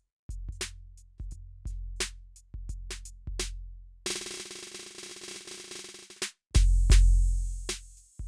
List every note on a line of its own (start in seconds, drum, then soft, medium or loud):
0.29 closed hi-hat medium
0.29 kick soft
0.49 kick soft
0.49 hi-hat pedal soft
0.61 closed hi-hat loud
0.61 snare loud
0.98 closed hi-hat medium
1.18 kick soft
1.18 snare soft
1.18 hi-hat pedal soft
1.31 closed hi-hat medium
1.31 kick soft
1.66 closed hi-hat medium
1.66 kick soft
1.70 snare soft
1.96 hi-hat pedal soft
2.00 closed hi-hat loud
2.00 snare loud
2.36 closed hi-hat medium
2.54 kick soft
2.69 closed hi-hat medium
2.69 kick soft
2.91 snare medium
3.05 closed hi-hat loud
3.27 kick medium
3.40 closed hi-hat loud
3.40 snare loud
4.06 snare loud
4.10 snare loud
4.16 snare loud
4.21 snare medium
4.26 snare medium
4.31 snare medium
4.34 snare medium
4.37 snare medium
4.40 snare medium
4.46 snare medium
4.51 snare medium
4.59 snare medium
4.63 snare medium
4.67 snare medium
4.72 snare soft
4.75 snare medium
4.79 snare medium
4.83 snare soft
4.86 snare medium
4.91 snare soft
4.95 snare soft
4.98 snare medium
5.03 snare medium
5.06 snare medium
5.09 snare soft
5.11 snare medium
5.16 snare medium
5.24 snare medium
5.28 snare medium
5.31 snare medium
5.34 snare soft
5.34 snare medium
5.41 snare soft
5.45 snare soft
5.47 snare medium
5.51 snare medium
5.54 snare medium
5.58 snare soft
5.60 snare medium
5.64 snare soft
5.68 snare soft
5.71 snare medium
5.75 snare medium
5.79 snare medium
5.84 snare medium
5.89 snare medium
5.99 snare soft
6.03 snare soft
6.10 snare soft
6.16 snare soft
6.22 snare loud
6.51 kick soft
6.51 snare loud
6.51 hi-hat pedal medium
6.55 kick loud
6.55 crash loud
6.86 kick soft
6.90 kick loud
6.90 snare loud
6.90 crash loud
7.67 closed hi-hat loud
7.67 snare loud
7.67 hi-hat pedal soft
7.97 closed hi-hat medium
8.20 kick soft